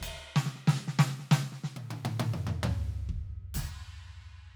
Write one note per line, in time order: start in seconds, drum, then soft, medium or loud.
0.02 kick soft
0.02 ride bell loud
0.02 percussion medium
0.08 kick soft
0.14 snare soft
0.18 percussion soft
0.37 snare loud
0.47 snare medium
0.56 snare soft
0.68 snare loud
0.78 snare soft
0.89 snare medium
1.00 snare loud
1.10 snare medium
1.20 snare soft
1.32 snare loud
1.44 snare soft
1.53 snare soft
1.64 snare medium
1.77 high tom medium
1.91 high tom medium
2.06 high tom loud
2.20 high tom loud
2.34 mid tom loud
2.48 mid tom medium
2.64 floor tom loud
3.10 kick medium
3.17 kick soft
3.24 kick soft
3.55 kick medium
3.55 snare medium
3.55 percussion loud
3.55 crash medium
3.64 kick soft
3.70 kick soft